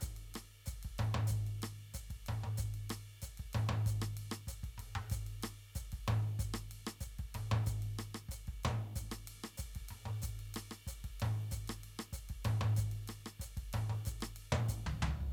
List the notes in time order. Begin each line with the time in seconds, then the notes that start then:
0.01 kick, hi-hat pedal, ride
0.17 ride
0.34 cross-stick, ride
0.66 kick, hi-hat pedal, ride
0.83 kick, ride
0.99 high tom, ride
1.15 high tom
1.27 kick, hi-hat pedal, ride
1.47 ride
1.62 cross-stick, ride
1.94 kick, hi-hat pedal, ride
2.11 kick, ride
2.27 high tom, ride
2.44 high tom
2.58 kick, hi-hat pedal, ride
2.74 ride
2.90 cross-stick, ride
3.22 kick, hi-hat pedal, ride
3.38 kick, ride
3.53 high tom, ride
3.69 high tom
3.86 kick, hi-hat pedal, ride
4.02 cross-stick, ride
4.17 ride
4.32 cross-stick
4.48 kick, hi-hat pedal, ride
4.64 kick, ride
4.78 high tom, ride
4.95 high tom
5.10 kick, hi-hat pedal, ride
5.27 ride
5.43 cross-stick, ride
5.75 kick, hi-hat pedal, ride
5.92 kick, ride
6.08 high tom, ride
6.39 kick, hi-hat pedal, ride
6.54 cross-stick, ride
6.71 ride
6.87 cross-stick
7.01 kick, hi-hat pedal, ride
7.19 kick, ride
7.35 high tom, ride
7.52 high tom
7.66 kick, hi-hat pedal, ride
7.82 ride
7.99 cross-stick, ride
8.15 cross-stick
8.29 kick, hi-hat pedal, ride
8.48 kick, ride
8.64 high tom, ride
8.96 kick, hi-hat pedal, ride
9.12 cross-stick, ride
9.28 ride
9.44 cross-stick
9.58 kick, hi-hat pedal, ride
9.75 kick, ride
9.89 high tom, ride
10.06 high tom
10.22 kick, hi-hat pedal, ride
10.39 ride
10.55 cross-stick, ride
10.71 cross-stick
10.87 kick, hi-hat pedal, ride
11.04 kick, ride
11.20 high tom, ride
11.51 kick, hi-hat pedal, ride
11.68 cross-stick, ride
11.84 ride
11.99 cross-stick
12.13 kick, hi-hat pedal, ride
12.29 kick, ride
12.45 high tom, ride
12.61 high tom
12.77 kick, hi-hat pedal, ride
12.92 ride
13.08 cross-stick, ride
13.26 cross-stick
13.40 kick, hi-hat pedal, ride
13.57 kick, ride
13.73 high tom, ride
13.90 high tom
14.06 kick, hi-hat pedal, ride
14.21 cross-stick, ride
14.36 ride
14.52 high tom
14.69 kick, hi-hat pedal, ride
14.87 floor tom
15.03 floor tom
15.21 kick